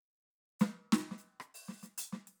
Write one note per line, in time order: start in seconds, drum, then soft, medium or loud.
0.60 snare loud
0.60 hi-hat pedal medium
0.93 snare loud
1.12 snare soft
1.19 hi-hat pedal soft
1.41 cross-stick medium
1.55 open hi-hat medium
1.69 snare soft
1.83 snare soft
1.83 hi-hat pedal medium
1.98 closed hi-hat loud
2.13 snare medium
2.28 closed hi-hat soft